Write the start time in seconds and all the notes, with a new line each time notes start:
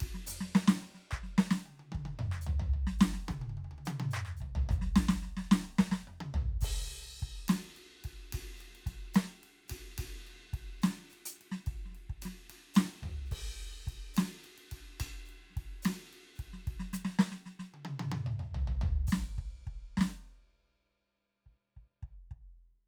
0.01 kick, ride
0.09 kick
0.15 snare
0.27 hi-hat pedal, mid tom
0.41 snare
0.56 snare
0.68 snare
0.82 snare
0.95 snare
1.11 kick, percussion
1.20 kick, snare
1.39 snare
1.51 snare
1.66 high tom
1.80 high tom
1.93 kick, high tom
2.01 kick
2.06 closed hi-hat, high tom
2.16 kick, mid tom
2.32 percussion
2.42 hi-hat pedal
2.47 floor tom
2.60 floor tom
2.70 kick
2.74 floor tom
2.87 snare
2.99 kick, snare, hi-hat pedal
3.14 snare
3.29 kick, hi-hat pedal, high tom
3.42 high tom
3.50 high tom
3.58 high tom
3.65 high tom
3.72 high tom
3.79 high tom
3.86 hi-hat pedal, high tom
4.01 high tom
4.11 percussion, hi-hat pedal
4.26 percussion
4.37 kick, hi-hat pedal
4.42 floor tom
4.56 floor tom
4.70 kick, hi-hat pedal, floor tom
4.82 snare
4.96 kick, snare
5.06 kick, snare
5.23 snare
5.37 snare
5.52 snare
5.64 snare
5.79 kick, snare
5.92 snare
6.03 kick
6.08 mid tom
6.21 high tom
6.35 floor tom
6.61 kick, hi-hat pedal, crash
6.70 kick
7.21 kick, ride
7.28 kick
7.49 snare, hi-hat pedal, ride
7.75 hi-hat pedal, ride
8.05 kick, ride
8.33 kick, ride
8.57 hi-hat pedal, ride
8.76 ride
8.87 kick, snare, ride bell
8.93 kick
9.14 snare, hi-hat pedal, ride bell
9.26 snare
9.44 ride
9.65 snare, hi-hat pedal
9.70 kick, ride
9.89 snare
9.99 kick, ride
10.05 kick
10.27 ride
10.54 kick, ride
10.59 kick
10.82 snare, hi-hat pedal, ride
10.92 snare
11.10 hi-hat pedal, ride
11.26 open hi-hat
11.42 ride
11.52 snare
11.61 snare
11.67 kick, ride bell
11.74 kick
11.86 snare
11.91 snare, ride
11.97 snare
12.10 kick
12.22 snare, hi-hat pedal, ride
12.50 ride
12.75 kick, snare, hi-hat pedal, ride
13.03 kick, floor tom
13.26 hi-hat pedal
13.32 kick, crash
13.39 kick
13.86 kick, snare, ride
14.15 snare, hi-hat pedal, ride
14.44 snare, hi-hat pedal, ride
14.59 ride
14.71 kick, hi-hat pedal, ride
15.01 kick, ride bell
15.07 kick
15.26 hi-hat pedal, ride
15.51 snare
15.57 kick, ride
15.83 snare, hi-hat pedal, ride
15.98 snare
16.14 ride
16.22 snare
16.36 kick, hi-hat pedal, ride
16.54 snare
16.68 kick, ride
16.74 kick
16.80 snare
16.94 snare, hi-hat pedal
17.05 snare
17.19 snare
17.32 snare
17.46 snare
17.60 snare
17.74 high tom
17.86 high tom
18.00 high tom
18.12 high tom
18.27 mid tom
18.40 mid tom
18.55 floor tom
18.68 floor tom
18.82 floor tom
19.08 kick, hi-hat pedal
19.13 kick, snare
19.39 kick
19.45 kick
19.67 kick
19.98 kick, snare
20.01 snare
20.10 cross-stick
21.47 kick
21.77 kick
22.03 kick
22.31 kick